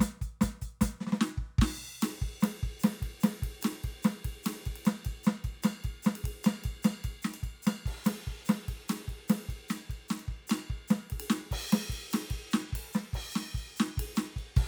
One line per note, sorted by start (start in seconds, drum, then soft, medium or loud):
0.01 closed hi-hat loud
0.01 kick medium
0.01 snare loud
0.23 closed hi-hat soft
0.23 kick medium
0.42 closed hi-hat loud
0.42 kick medium
0.42 snare loud
0.63 closed hi-hat medium
0.63 kick soft
0.82 closed hi-hat loud
0.82 kick medium
0.82 snare loud
0.97 kick soft
1.02 snare medium
1.08 snare medium
1.14 snare loud
1.22 snare loud
1.39 kick medium
1.60 kick loud
1.60 snare loud
1.60 crash loud
2.02 snare loud
2.02 hi-hat pedal medium
2.02 ride loud
2.23 kick medium
2.23 ride soft
2.42 snare loud
2.42 hi-hat pedal medium
2.42 ride loud
2.64 kick medium
2.64 ride soft
2.81 hi-hat pedal medium
2.85 snare loud
2.85 ride loud
3.03 kick medium
3.03 ride medium
3.21 snare loud
3.21 hi-hat pedal medium
3.21 ride loud
3.43 kick medium
3.43 ride medium
3.62 snare loud
3.62 hi-hat pedal medium
3.62 ride loud
3.85 kick medium
3.85 ride medium
4.04 snare loud
4.04 hi-hat pedal medium
4.04 ride loud
4.26 kick medium
4.26 ride medium
4.44 snare loud
4.44 hi-hat pedal medium
4.44 ride loud
4.67 kick medium
4.67 ride bell medium
4.77 ride medium
4.86 snare loud
4.86 hi-hat pedal medium
4.86 ride bell medium
5.06 kick medium
5.06 ride bell medium
5.24 snare loud
5.24 hi-hat pedal medium
5.24 ride bell medium
5.45 kick medium
5.45 ride bell medium
5.64 snare loud
5.64 hi-hat pedal medium
5.64 ride bell loud
5.85 kick medium
5.85 ride bell medium
6.04 snare loud
6.04 hi-hat pedal medium
6.04 ride bell medium
6.17 ride medium
6.25 kick medium
6.44 snare loud
6.44 hi-hat pedal medium
6.44 ride bell loud
6.65 kick medium
6.65 ride bell medium
6.84 snare loud
6.84 hi-hat pedal medium
6.84 ride bell loud
7.05 kick medium
7.05 ride bell medium
7.23 snare loud
7.23 hi-hat pedal medium
7.35 ride bell medium
7.44 kick medium
7.44 ride bell medium
7.63 hi-hat pedal medium
7.68 snare loud
7.68 ride bell loud
7.87 kick medium
7.87 crash medium
8.05 snare loud
8.05 hi-hat pedal medium
8.05 ride loud
8.28 kick medium
8.46 snare loud
8.46 hi-hat pedal medium
8.50 ride loud
8.69 kick medium
8.69 ride medium
8.89 snare loud
8.89 hi-hat pedal medium
8.89 ride loud
9.09 kick medium
9.09 ride soft
9.29 snare loud
9.29 hi-hat pedal medium
9.29 ride loud
9.50 kick medium
9.50 ride bell medium
9.70 snare loud
9.70 hi-hat pedal medium
9.70 ride bell medium
9.91 kick medium
9.91 ride bell soft
10.10 snare loud
10.10 hi-hat pedal medium
10.21 ride bell medium
10.29 kick medium
10.48 snare loud
10.48 hi-hat pedal medium
10.48 ride bell loud
10.71 kick medium
10.89 snare loud
10.89 hi-hat pedal medium
10.89 ride bell medium
11.11 kick medium
11.11 ride medium
11.21 ride loud
11.31 snare loud
11.31 hi-hat pedal medium
11.52 kick medium
11.52 crash loud
11.71 snare loud
11.71 hi-hat pedal medium
11.71 ride loud
11.91 kick medium
11.91 ride medium
12.12 snare loud
12.12 hi-hat pedal medium
12.12 ride loud
12.31 kick medium
12.31 ride medium
12.52 snare loud
12.52 hi-hat pedal medium
12.74 kick medium
12.74 crash loud
12.94 snare medium
12.94 hi-hat pedal medium
13.14 kick medium
13.14 crash loud
13.32 hi-hat pedal medium
13.37 snare loud
13.56 kick medium
13.56 crash soft
13.77 snare loud
13.77 hi-hat pedal medium
13.99 kick medium
13.99 ride loud
14.16 snare loud
14.16 hi-hat pedal medium
14.37 kick medium
14.37 crash soft
14.58 kick loud
14.58 crash medium